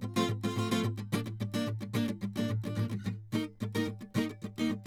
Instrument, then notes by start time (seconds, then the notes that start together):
acoustic guitar
0.17 A3 C4 F4
0.45 A3 C4 F4
0.57 F3 A3 C4 F4
0.73 F3 A3 C4 F4
0.86 F3
1.14 E3 A#3 D4
1.56 A#3 D4
1.96 A#3 D4
2.39 A#3 D4
2.66 A#3 D4
2.80 A#3
3.34 A#3 D#4 A#4
3.76 A#3 D#4 A#4
4.17 A#3 D#4 A#4
4.61 A#3 D#4